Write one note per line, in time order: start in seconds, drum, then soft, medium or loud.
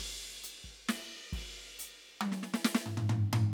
0.44 closed hi-hat medium
0.65 kick soft
0.89 snare loud
0.89 crash medium
1.33 kick soft
1.33 ride medium
1.79 open hi-hat loud
1.79 hi-hat pedal medium
2.21 high tom loud
2.32 snare medium
2.43 snare medium
2.54 snare loud
2.65 snare loud
2.75 snare loud
2.86 floor tom loud
2.98 floor tom loud
3.10 floor tom loud
3.33 floor tom loud